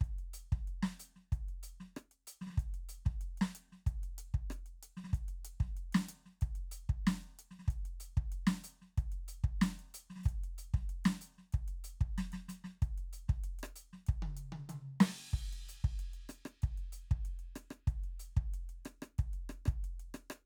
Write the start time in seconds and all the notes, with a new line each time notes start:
0.01 kick, closed hi-hat
0.19 closed hi-hat
0.34 closed hi-hat
0.52 kick, snare
0.68 closed hi-hat
0.83 snare, closed hi-hat
1.00 closed hi-hat
1.16 snare
1.32 kick, closed hi-hat
1.49 closed hi-hat
1.63 closed hi-hat
1.80 snare
1.97 cross-stick, closed hi-hat
2.11 closed hi-hat
2.27 closed hi-hat
2.41 snare
2.47 snare
2.50 snare
2.53 snare
2.58 kick, snare, closed hi-hat
2.74 closed hi-hat
2.89 closed hi-hat
3.05 kick, snare
3.21 closed hi-hat
3.38 snare, closed hi-hat
3.55 closed hi-hat
3.72 snare
3.87 kick, closed hi-hat
4.03 closed hi-hat
4.18 closed hi-hat
4.34 kick
4.50 cross-stick, closed hi-hat
4.66 closed hi-hat
4.83 closed hi-hat
4.97 snare
5.04 snare
5.09 kick, snare
5.15 closed hi-hat
5.28 closed hi-hat
5.45 closed hi-hat
5.60 kick, snare
5.77 closed hi-hat
5.93 snare, closed hi-hat
6.09 closed hi-hat
6.26 snare
6.41 kick, closed hi-hat
6.55 closed hi-hat
6.72 closed hi-hat
6.89 kick
7.07 snare, closed hi-hat
7.23 closed hi-hat
7.39 closed hi-hat
7.51 snare
7.59 snare
7.65 kick, snare
7.70 closed hi-hat
7.86 closed hi-hat
8.00 closed hi-hat
8.17 kick
8.32 closed hi-hat
8.47 snare, closed hi-hat
8.64 closed hi-hat
8.82 snare
8.98 kick, closed hi-hat
9.12 closed hi-hat
9.28 closed hi-hat
9.44 kick
9.62 snare, closed hi-hat
9.79 closed hi-hat
9.94 open hi-hat
10.10 snare
10.16 snare
10.19 snare
10.23 kick, snare, hi-hat pedal
10.29 closed hi-hat
10.44 closed hi-hat
10.58 closed hi-hat
10.74 kick, snare
10.89 closed hi-hat
11.05 snare, closed hi-hat
11.21 closed hi-hat
11.38 snare
11.53 kick, closed hi-hat
11.68 closed hi-hat
11.84 closed hi-hat
12.01 kick
12.18 snare, closed hi-hat
12.32 snare, closed hi-hat
12.49 closed hi-hat, snare
12.64 snare
12.82 kick, closed hi-hat
12.98 closed hi-hat
13.13 closed hi-hat
13.29 kick, snare
13.44 closed hi-hat
13.59 closed hi-hat
13.63 cross-stick
13.76 closed hi-hat
13.93 snare
14.07 kick, closed hi-hat
14.22 high tom
14.37 closed hi-hat
14.52 high tom
14.69 closed hi-hat, high tom
15.01 snare, crash
15.33 kick
15.39 closed hi-hat
15.53 closed hi-hat
15.69 closed hi-hat
15.84 kick
15.99 closed hi-hat
16.14 closed hi-hat
16.29 closed hi-hat, cross-stick
16.45 cross-stick
16.62 kick, closed hi-hat
16.78 closed hi-hat
16.93 closed hi-hat
17.11 kick
17.25 closed hi-hat
17.39 closed hi-hat
17.56 cross-stick, closed hi-hat
17.71 cross-stick
17.88 kick, closed hi-hat
18.04 closed hi-hat
18.20 closed hi-hat
18.37 kick
18.54 closed hi-hat
18.69 closed hi-hat
18.85 cross-stick, closed hi-hat
19.02 cross-stick
19.19 kick, closed hi-hat
19.34 closed hi-hat
19.49 cross-stick, closed hi-hat
19.66 kick, cross-stick
19.84 closed hi-hat
20.00 closed hi-hat
20.14 cross-stick, closed hi-hat
20.30 cross-stick